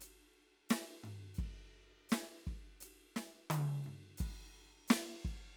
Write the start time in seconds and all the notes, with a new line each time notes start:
0.01 hi-hat pedal, ride
0.34 ride
0.70 snare, hi-hat pedal, ride
1.04 floor tom, ride
1.35 hi-hat pedal, crash
1.39 kick
2.09 snare, hi-hat pedal, ride
2.47 kick
2.81 hi-hat pedal, ride
3.16 snare, ride
3.50 hi-hat pedal, mid tom, ride
3.84 floor tom, ride
4.18 kick, hi-hat pedal, crash
4.88 snare, hi-hat pedal, ride
5.25 kick, ride